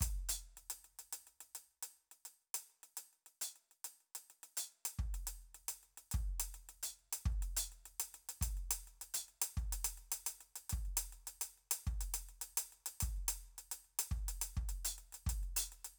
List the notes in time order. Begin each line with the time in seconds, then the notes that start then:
0.00 kick, closed hi-hat, hi-hat pedal
0.29 closed hi-hat
0.41 closed hi-hat
0.57 closed hi-hat
0.70 closed hi-hat
0.84 closed hi-hat
0.99 closed hi-hat
1.12 closed hi-hat
1.27 closed hi-hat
1.40 closed hi-hat
1.55 closed hi-hat
1.71 closed hi-hat
1.82 closed hi-hat
1.97 closed hi-hat
2.11 closed hi-hat
2.25 closed hi-hat
2.41 closed hi-hat
2.54 closed hi-hat
2.70 closed hi-hat
2.83 closed hi-hat
2.97 closed hi-hat
3.13 closed hi-hat
3.26 closed hi-hat
3.41 closed hi-hat
3.56 closed hi-hat
3.71 closed hi-hat
3.84 closed hi-hat
4.00 closed hi-hat
4.15 closed hi-hat
4.30 closed hi-hat
4.43 closed hi-hat
4.57 closed hi-hat
4.72 closed hi-hat
4.85 closed hi-hat
4.98 kick
5.14 closed hi-hat
5.27 closed hi-hat
5.42 closed hi-hat
5.54 closed hi-hat
5.68 closed hi-hat
5.83 closed hi-hat
5.97 closed hi-hat
6.11 kick, closed hi-hat
6.40 closed hi-hat
6.54 closed hi-hat
6.69 closed hi-hat
6.83 closed hi-hat
6.99 closed hi-hat
7.12 closed hi-hat
7.25 kick
7.32 closed hi-hat
7.42 closed hi-hat
7.56 closed hi-hat
7.72 closed hi-hat
7.85 closed hi-hat
8.00 closed hi-hat
8.14 closed hi-hat
8.29 closed hi-hat
8.41 kick, closed hi-hat
8.57 closed hi-hat
8.71 closed hi-hat
8.87 closed hi-hat
9.01 closed hi-hat
9.14 closed hi-hat
9.28 closed hi-hat
9.41 closed hi-hat
9.57 kick, closed hi-hat
9.72 closed hi-hat
9.84 closed hi-hat
9.97 closed hi-hat
10.12 closed hi-hat
10.26 closed hi-hat
10.40 closed hi-hat
10.55 closed hi-hat
10.69 kick, closed hi-hat
10.85 closed hi-hat
10.97 closed hi-hat
11.12 closed hi-hat
11.27 closed hi-hat
11.41 closed hi-hat
11.57 closed hi-hat
11.71 closed hi-hat
11.86 kick, closed hi-hat
12.01 closed hi-hat
12.14 closed hi-hat
12.28 closed hi-hat
12.41 closed hi-hat
12.57 closed hi-hat
12.72 closed hi-hat
12.86 closed hi-hat
13.00 kick, closed hi-hat
13.16 closed hi-hat
13.28 closed hi-hat
13.42 closed hi-hat
13.58 closed hi-hat
13.71 closed hi-hat
13.84 closed hi-hat
13.99 closed hi-hat
14.11 kick
14.16 closed hi-hat
14.28 closed hi-hat
14.41 closed hi-hat
14.56 kick, closed hi-hat
14.69 closed hi-hat
14.85 closed hi-hat
14.98 closed hi-hat
15.12 closed hi-hat
15.14 closed hi-hat
15.26 kick, closed hi-hat
15.43 closed hi-hat
15.56 closed hi-hat
15.72 closed hi-hat
15.84 closed hi-hat